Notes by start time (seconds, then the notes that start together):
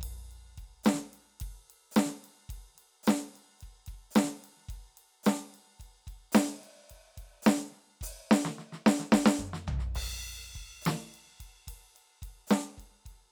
0.01 kick, ride
0.07 kick
0.31 ride
0.51 snare
0.58 kick, ride
0.84 snare, hi-hat pedal, ride
0.94 snare
1.14 ride
1.18 snare
1.24 snare
1.40 kick, ride
1.49 kick
1.70 ride
1.92 hi-hat pedal
1.96 snare, ride
2.06 snare
2.24 snare, ride
2.32 snare
2.49 kick, ride
2.56 kick
2.75 snare, ride
3.03 hi-hat pedal, ride
3.08 snare
3.36 ride
3.59 kick, hi-hat pedal, ride
3.87 kick, ride
3.94 kick
4.11 hi-hat pedal
4.16 snare, ride
4.24 snare
4.38 hi-hat pedal
4.44 ride
4.57 snare
4.61 snare
4.69 kick, hi-hat pedal, ride
4.76 kick
4.98 ride
5.24 snare, hi-hat pedal, ride
5.54 ride
5.79 kick, hi-hat pedal, ride
6.07 kick, ride
6.32 snare, hi-hat pedal, ride
6.59 snare
6.64 ride
6.74 snare
6.78 snare
6.80 snare
6.90 kick, ride
7.18 kick, ride
7.43 hi-hat pedal
7.47 snare, ride
7.57 snare
7.71 snare
8.01 kick, hi-hat pedal
8.08 kick
8.31 snare
8.45 snare
8.59 snare
8.73 snare
8.87 snare
9.00 snare
9.12 kick, snare
9.26 snare
9.39 kick, mid tom
9.44 kick
9.54 snare
9.68 kick, floor tom
9.79 snare
9.95 kick, crash
10.02 kick
10.38 snare
10.56 kick, ride
10.62 kick
10.82 hi-hat pedal, ride
10.87 snare
11.11 hi-hat pedal, ride
11.27 snare
11.32 snare
11.37 kick, hi-hat pedal, ride
11.68 kick, ride
11.73 kick
11.95 hi-hat pedal, ride
12.22 kick, ride
12.30 kick
12.47 snare, hi-hat pedal, ride
12.78 kick, ride
13.06 kick, ride
13.10 snare
13.22 snare
13.25 snare